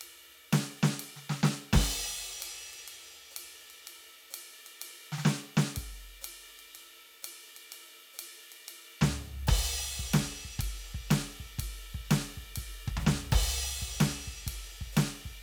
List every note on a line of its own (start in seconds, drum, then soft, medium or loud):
0.01 ride loud
0.53 snare loud
0.53 ride loud
0.83 snare loud
0.99 ride loud
1.16 snare soft
1.29 snare medium
1.43 snare loud
1.73 kick loud
1.73 snare loud
1.73 hi-hat pedal soft
1.73 crash loud
2.40 hi-hat pedal medium
2.40 ride loud
2.73 ride medium
2.88 ride medium
3.31 hi-hat pedal soft
3.36 ride loud
3.70 ride medium
3.87 ride medium
4.30 hi-hat pedal soft
4.30 ride loud
4.66 ride medium
4.82 ride loud
5.12 snare medium
5.17 snare medium
5.17 hi-hat pedal soft
5.24 snare soft
5.24 snare loud
5.57 snare loud
5.76 kick medium
5.76 ride loud
6.21 hi-hat pedal medium
6.21 ride loud
6.59 ride medium
6.75 ride medium
7.22 hi-hat pedal soft
7.22 ride loud
7.56 ride medium
7.72 ride medium
8.14 hi-hat pedal soft
8.19 ride loud
8.52 ride medium
8.68 ride loud
9.01 snare loud
9.01 floor tom loud
9.33 kick soft
9.46 kick loud
9.46 cross-stick soft
9.46 crash loud
9.99 kick medium
10.06 hi-hat pedal soft
10.14 snare loud
10.14 ride loud
10.45 kick soft
10.59 kick loud
10.59 ride loud
10.94 kick medium
11.10 snare loud
11.10 ride loud
11.40 kick medium
11.59 kick medium
11.59 ride loud
11.94 kick medium
12.11 snare loud
12.11 ride loud
12.37 kick medium
12.56 kick medium
12.56 ride loud
12.88 kick medium
12.97 floor tom loud
12.97 hi-hat pedal medium
13.06 snare loud
13.32 kick loud
13.32 crash loud
13.82 kick medium
13.94 hi-hat pedal medium
14.00 snare loud
14.00 ride loud
14.27 kick medium
14.47 kick medium
14.47 ride loud
14.81 kick medium
14.92 hi-hat pedal soft
14.97 snare loud
14.97 ride loud
15.25 kick medium